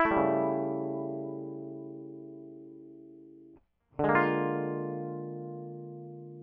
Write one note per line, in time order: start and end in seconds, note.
0.00 3.61 E4
0.06 3.55 A3
0.12 3.62 G3
0.18 3.62 C#3
4.00 6.42 D3
4.04 6.42 G#3
4.09 6.42 A#3
4.16 6.42 F4